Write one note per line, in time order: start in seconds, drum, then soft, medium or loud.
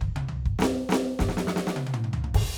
0.01 kick loud
0.01 floor tom medium
0.16 high tom loud
0.29 floor tom loud
0.46 kick medium
0.59 snare loud
0.62 snare loud
0.89 snare loud
0.92 snare loud
1.19 kick loud
1.19 snare loud
1.29 snare loud
1.37 snare loud
1.46 snare loud
1.46 hi-hat pedal soft
1.56 snare loud
1.67 snare loud
1.76 high tom loud
1.87 high tom loud
1.94 mid tom loud
2.04 high tom medium
2.13 floor tom loud
2.24 mid tom loud
2.34 kick loud
2.34 crash loud